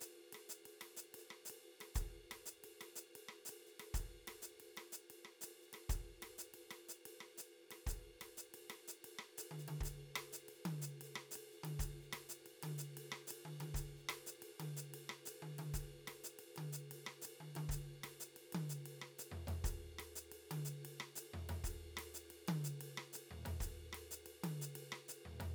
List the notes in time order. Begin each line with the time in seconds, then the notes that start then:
0.01 hi-hat pedal, ride
0.33 cross-stick, ride
0.49 hi-hat pedal
0.66 ride
0.81 cross-stick, ride
0.97 hi-hat pedal
1.14 hi-hat pedal, ride
1.31 cross-stick
1.45 hi-hat pedal
1.50 ride
1.81 cross-stick, ride
1.95 kick, hi-hat pedal, ride
2.31 cross-stick, ride
2.46 hi-hat pedal
2.64 ride
2.81 cross-stick, ride
2.96 hi-hat pedal
3.16 ride
3.29 cross-stick
3.45 hi-hat pedal
3.49 ride
3.67 hi-hat pedal
3.80 cross-stick, ride
3.94 kick, hi-hat pedal, ride
4.28 cross-stick, ride
4.42 hi-hat pedal
4.60 ride
4.77 cross-stick, ride
4.93 hi-hat pedal
5.10 ride
5.25 cross-stick
5.41 hi-hat pedal, ride
5.62 hi-hat pedal
5.73 cross-stick, ride
5.90 kick, hi-hat pedal, ride
6.22 cross-stick, ride
6.39 hi-hat pedal
6.54 ride
6.71 cross-stick, ride
6.89 hi-hat pedal
7.06 ride
7.21 cross-stick
7.38 hi-hat pedal, ride
7.71 cross-stick, ride
7.87 kick, hi-hat pedal, ride
8.21 cross-stick, ride
8.38 hi-hat pedal
8.54 ride
8.70 cross-stick, ride
8.88 hi-hat pedal
9.05 ride
9.19 cross-stick
9.38 hi-hat pedal, ride
9.51 high tom
9.59 hi-hat pedal
9.68 high tom, ride
9.81 kick, ride
9.85 hi-hat pedal
10.16 cross-stick, ride
10.33 hi-hat pedal
10.49 ride
10.54 hi-hat pedal
10.65 high tom, ride
10.82 hi-hat pedal
11.01 hi-hat pedal, ride
11.16 cross-stick
11.31 hi-hat pedal
11.36 ride
11.52 hi-hat pedal
11.64 high tom, ride
11.80 kick, hi-hat pedal, ride
12.02 hi-hat pedal
12.13 cross-stick, ride
12.29 hi-hat pedal
12.46 ride
12.63 high tom, ride
12.78 hi-hat pedal
12.97 ride
13.12 cross-stick
13.27 hi-hat pedal, ride
13.45 high tom
13.60 high tom, ride
13.74 kick, hi-hat pedal, ride
13.98 hi-hat pedal
14.09 cross-stick, ride
14.27 hi-hat pedal
14.42 ride
14.60 high tom, ride
14.77 hi-hat pedal
14.94 ride
15.10 cross-stick
15.26 hi-hat pedal, ride
15.43 high tom
15.59 high tom, ride
15.74 kick, hi-hat pedal, ride
16.08 cross-stick, ride
16.24 hi-hat pedal
16.39 ride
16.56 high tom, ride
16.73 hi-hat pedal
16.91 hi-hat pedal, ride
17.07 cross-stick
17.22 hi-hat pedal, ride
17.40 high tom
17.56 high tom, ride
17.69 kick, hi-hat pedal, ride
18.04 cross-stick, ride
18.20 hi-hat pedal
18.36 ride
18.53 high tom, ride
18.70 hi-hat pedal
18.86 ride
19.02 cross-stick
19.19 hi-hat pedal, ride
19.32 floor tom
19.47 floor tom, ride
19.64 kick, hi-hat pedal, ride
19.99 cross-stick, ride
20.16 hi-hat pedal
20.32 ride
20.51 high tom, ride
20.65 hi-hat pedal
20.85 ride
21.00 cross-stick
21.16 hi-hat pedal, ride
21.34 floor tom
21.49 floor tom, ride
21.64 kick, hi-hat pedal, ride
21.97 cross-stick, ride
22.14 hi-hat pedal
22.30 ride
22.48 high tom, ride
22.64 hi-hat pedal
22.81 ride
22.98 cross-stick
23.13 hi-hat pedal, ride
23.31 floor tom
23.45 floor tom, ride
23.60 kick, hi-hat pedal, ride
23.93 cross-stick, ride
24.11 hi-hat pedal
24.26 ride
24.44 high tom, ride
24.62 hi-hat pedal
24.76 ride
24.92 cross-stick
25.09 hi-hat pedal, ride
25.26 floor tom
25.40 floor tom, ride